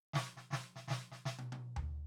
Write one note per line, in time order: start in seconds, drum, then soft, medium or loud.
0.13 snare medium
0.15 snare medium
0.37 snare soft
0.50 snare soft
0.53 snare medium
0.76 snare soft
0.88 snare medium
0.90 snare medium
1.12 snare soft
1.25 snare medium
1.39 high tom medium
1.52 high tom medium
1.76 floor tom medium